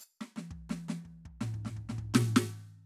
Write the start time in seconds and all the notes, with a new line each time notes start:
0.01 percussion
0.21 snare, high tom
0.37 snare, high tom
0.51 kick
0.70 snare, high tom
0.89 snare, high tom
1.06 kick
1.26 kick
1.41 snare, floor tom
1.54 kick
1.65 snare, floor tom
1.77 kick
1.90 snare, floor tom
1.99 kick
2.15 snare, floor tom
2.37 snare